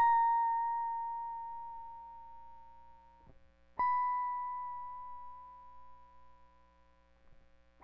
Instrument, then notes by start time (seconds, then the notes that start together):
electric guitar
0.00 A#5
3.80 B5
4.88 B5